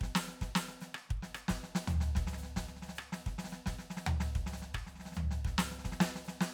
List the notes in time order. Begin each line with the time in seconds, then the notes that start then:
0.01 kick, snare
0.07 kick
0.15 snare
0.23 hi-hat pedal
0.28 snare
0.41 kick, snare
0.55 snare
0.68 snare
0.81 snare, hi-hat pedal
0.95 cross-stick
1.09 kick, snare
1.17 kick
1.23 snare
1.35 cross-stick, hi-hat pedal
1.48 kick, snare
1.63 snare
1.75 snare
1.88 floor tom, hi-hat pedal
2.01 snare
2.15 kick, snare
2.23 kick
2.27 snare
2.33 snare
2.38 snare, hi-hat pedal
2.43 snare
2.56 kick, snare
2.68 snare
2.76 snare
2.82 snare
2.89 snare
2.96 cross-stick, hi-hat pedal
3.12 snare
3.26 kick, snare
3.32 kick
3.38 snare
3.44 snare
3.49 snare, hi-hat pedal
3.66 kick, snare
3.73 kick
3.79 snare
3.90 snare
3.97 snare
4.06 hi-hat pedal, floor tom
4.20 snare
4.35 kick, snare
4.41 kick
4.46 snare
4.53 snare
4.57 hi-hat pedal
4.62 snare
4.74 kick, cross-stick
4.87 snare
4.95 snare
5.00 snare
5.06 snare
5.12 snare, hi-hat pedal
5.17 floor tom
5.31 snare
5.45 kick, snare
5.53 kick
5.58 snare
5.67 snare, hi-hat pedal
5.79 snare
5.85 kick, snare
5.92 snare
6.01 snare
6.15 snare
6.25 snare, hi-hat pedal
6.41 snare